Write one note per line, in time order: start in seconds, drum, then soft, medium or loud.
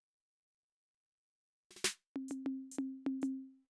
1.71 snare soft
1.76 snare soft
1.84 snare loud
2.16 high tom medium
2.28 hi-hat pedal medium
2.28 high tom medium
2.46 high tom loud
2.71 hi-hat pedal medium
2.78 high tom loud
3.06 high tom loud
3.22 hi-hat pedal soft
3.22 high tom loud